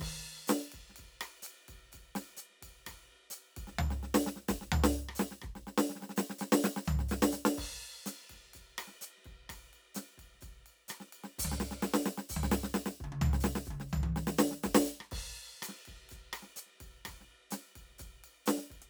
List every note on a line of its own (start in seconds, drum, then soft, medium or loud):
0.01 kick soft
0.01 cross-stick soft
0.01 crash medium
0.07 kick soft
0.48 snare medium
0.48 hi-hat pedal loud
0.48 ride medium
0.72 kick soft
0.72 ride medium
0.79 kick soft
0.90 snare soft
0.96 kick soft
0.96 hi-hat pedal soft
0.96 ride medium
1.04 kick soft
1.21 cross-stick medium
1.21 ride medium
1.43 hi-hat pedal medium
1.47 ride medium
1.69 kick soft
1.69 ride medium
1.74 kick soft
1.92 kick soft
1.92 hi-hat pedal soft
1.92 ride medium
2.00 kick soft
2.16 snare medium
2.16 ride medium
2.37 hi-hat pedal medium
2.50 snare soft
2.55 snare soft
2.63 kick soft
2.63 ride medium
2.68 kick soft
2.86 kick soft
2.86 cross-stick medium
2.86 hi-hat pedal soft
2.86 ride medium
2.93 kick soft
3.31 hi-hat pedal loud
3.31 ride medium
3.57 kick soft
3.57 ride medium
3.64 kick soft
3.64 snare soft
3.79 floor tom loud
3.91 snare soft
4.03 snare soft
4.15 snare loud
4.20 hi-hat pedal medium
4.27 snare medium
4.36 snare soft
4.48 kick soft
4.48 snare loud
4.48 hi-hat pedal medium
4.56 kick soft
4.62 snare soft
4.72 floor tom loud
4.84 snare loud
4.91 hi-hat pedal soft
4.98 snare soft
5.09 cross-stick medium
5.15 hi-hat pedal medium
5.20 snare loud
5.31 snare soft
5.42 kick soft
5.42 cross-stick medium
5.42 hi-hat pedal soft
5.56 snare soft
5.67 snare soft
5.78 snare loud
5.90 snare soft
5.96 snare soft
6.01 snare soft
6.03 snare soft
6.10 snare soft
6.17 snare loud
6.17 hi-hat pedal medium
6.30 snare medium
6.39 snare medium
6.39 hi-hat pedal medium
6.52 snare loud
6.63 snare loud
6.63 hi-hat pedal medium
6.77 snare medium
6.85 floor tom loud
6.85 hi-hat pedal soft
6.99 snare soft
7.09 snare medium
7.09 hi-hat pedal medium
7.23 snare loud
7.32 snare soft
7.32 hi-hat pedal medium
7.45 snare loud
7.58 kick soft
7.58 hi-hat pedal soft
7.58 crash medium
7.64 kick soft
8.06 snare medium
8.06 hi-hat pedal medium
8.06 ride medium
8.30 kick soft
8.30 snare soft
8.30 ride medium
8.35 kick soft
8.40 snare soft
8.47 snare soft
8.50 snare soft
8.50 hi-hat pedal soft
8.50 ride medium
8.55 kick soft
8.60 kick soft
8.78 cross-stick medium
8.78 ride loud
8.88 snare soft
9.01 hi-hat pedal medium
9.01 ride soft
9.18 snare soft
9.25 kick soft
9.25 ride soft
9.31 kick soft
9.50 kick soft
9.50 cross-stick medium
9.50 ride medium
9.55 kick soft
9.73 ride soft
9.95 snare medium
9.95 hi-hat pedal medium
9.95 ride medium
10.18 kick soft
10.18 ride soft
10.23 kick soft
10.34 snare soft
10.39 kick soft
10.39 snare soft
10.39 hi-hat pedal soft
10.39 ride soft
10.48 kick soft
10.66 ride soft
10.88 cross-stick medium
10.88 hi-hat pedal medium
10.88 ride medium
11.00 snare soft
11.13 ride medium
11.24 snare soft
11.39 kick soft
11.39 hi-hat pedal loud
11.45 kick soft
11.45 floor tom medium
11.52 snare medium
11.60 kick soft
11.60 snare medium
11.71 snare medium
11.83 snare loud
11.94 snare medium
12.01 hi-hat pedal soft
12.06 snare medium
12.18 snare medium
12.29 kick soft
12.29 hi-hat pedal medium
12.37 floor tom medium
12.44 snare medium
12.51 kick soft
12.51 snare loud
12.64 snare medium
12.69 hi-hat pedal soft
12.75 snare loud
12.86 snare medium
13.01 kick soft
13.01 mid tom medium
13.07 kick soft
13.12 mid tom medium
13.22 floor tom loud
13.34 snare medium
13.40 kick soft
13.40 hi-hat pedal medium
13.44 snare loud
13.56 snare medium
13.65 kick soft
13.65 hi-hat pedal soft
13.71 mid tom medium
13.76 kick soft
13.80 snare soft
13.89 floor tom loud
13.89 hi-hat pedal soft
13.94 kick soft
14.03 high tom medium
14.11 kick soft
14.16 snare medium
14.27 snare medium
14.38 snare loud
14.38 hi-hat pedal medium
14.51 snare soft
14.63 kick soft
14.63 snare medium
14.63 hi-hat pedal medium
14.71 kick soft
14.75 snare loud
14.85 kick soft
14.85 hi-hat pedal medium
15.01 cross-stick medium
15.12 kick medium
15.12 crash medium
15.16 kick soft
15.16 cross-stick soft
15.63 cross-stick medium
15.63 hi-hat pedal medium
15.63 ride loud
15.69 snare soft
15.86 kick soft
15.86 ride soft
15.91 snare soft
15.95 snare soft
15.99 snare soft
16.02 snare soft
16.09 kick soft
16.09 hi-hat pedal soft
16.09 ride soft
16.17 kick soft
16.33 cross-stick medium
16.33 ride medium
16.43 snare soft
16.56 hi-hat pedal medium
16.56 ride soft
16.66 snare soft
16.71 snare soft
16.75 snare soft
16.81 kick soft
16.81 ride medium
16.86 kick soft
17.06 kick soft
17.06 cross-stick medium
17.06 hi-hat pedal soft
17.06 ride medium
17.13 kick soft
17.21 snare soft
17.51 snare medium
17.51 hi-hat pedal medium
17.51 ride medium
17.76 kick soft
17.76 ride medium
17.81 kick soft
17.90 snare soft
17.95 snare soft
17.95 hi-hat pedal soft
18.00 kick soft
18.00 ride medium
18.06 kick soft
18.24 ride medium
18.46 snare medium
18.46 hi-hat pedal medium
18.46 ride medium
18.58 snare soft
18.71 kick soft
18.71 ride soft
18.76 kick soft
18.82 open hi-hat soft